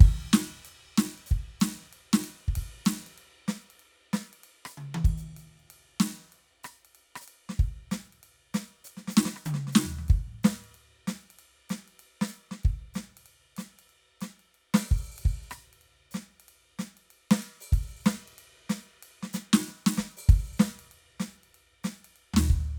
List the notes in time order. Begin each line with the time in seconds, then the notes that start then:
0.01 kick, crash
0.34 snare, ride
0.65 hi-hat pedal, ride
0.98 snare, hi-hat pedal, ride
1.18 ride
1.27 hi-hat pedal
1.31 kick, ride
1.61 snare, hi-hat pedal, ride
1.93 ride
2.14 snare
2.24 ride
2.49 kick
2.56 kick, ride
2.64 hi-hat pedal
2.86 snare, hi-hat pedal, ride
3.07 ride
3.18 ride
3.49 snare, hi-hat pedal, ride
3.71 ride
3.80 ride
4.14 snare, hi-hat pedal, ride
4.34 ride
4.44 ride
4.66 cross-stick, hi-hat pedal
4.78 mid tom
4.95 high tom
5.05 kick, crash
5.18 hi-hat pedal
5.37 hi-hat pedal, ride
5.60 ride
5.71 ride
6.01 snare, hi-hat pedal
6.33 ride
6.64 cross-stick, hi-hat pedal
6.86 ride
7.16 cross-stick
7.22 hi-hat pedal
7.28 ride
7.50 snare
7.60 kick, ride
7.92 snare, hi-hat pedal, ride
8.13 ride
8.24 ride
8.55 snare, hi-hat pedal, ride
8.85 hi-hat pedal, ride
8.98 snare
9.08 snare, hi-hat pedal
9.18 snare
9.26 snare
9.37 cross-stick
9.46 hi-hat pedal, mid tom
9.55 snare
9.68 snare
9.73 snare, hi-hat pedal
9.85 floor tom
9.99 floor tom
10.09 kick, ride
10.44 snare, hi-hat pedal, ride
10.65 ride
10.75 ride
11.08 snare, hi-hat pedal, ride
11.31 ride
11.39 ride
11.70 snare, hi-hat pedal, ride
11.88 ride
12.00 ride
12.22 snare
12.28 hi-hat pedal
12.34 ride
12.52 snare
12.64 kick, ride
12.95 snare, hi-hat pedal
12.99 ride
13.18 ride
13.26 ride
13.57 snare, hi-hat pedal, ride
13.79 ride
13.90 ride
14.21 snare, hi-hat pedal, ride
14.40 ride
14.55 ride
14.75 open hi-hat, snare
14.92 kick
15.19 ride
15.26 kick
15.51 cross-stick, hi-hat pedal, ride
15.74 ride
15.82 ride
16.12 snare, hi-hat pedal
16.16 ride
16.41 ride
16.49 ride
16.79 snare, hi-hat pedal, ride
16.98 ride
17.11 ride
17.31 snare
17.43 ride
17.61 open hi-hat
17.73 kick, ride
18.05 snare, hi-hat pedal, ride
18.28 ride
18.39 ride
18.70 snare, hi-hat pedal, ride
19.03 ride
19.23 snare
19.34 snare, hi-hat pedal
19.54 snare
19.68 snare, hi-hat pedal
19.87 snare
19.94 hi-hat pedal
19.98 kick, snare
20.18 open hi-hat
20.29 kick, ride
20.59 snare, hi-hat pedal, ride
20.80 ride
20.92 ride
21.20 snare, hi-hat pedal, ride
21.44 ride
21.55 ride
21.84 snare, hi-hat pedal, ride
22.05 ride
22.16 ride
22.34 snare, floor tom
22.39 hi-hat pedal
22.50 kick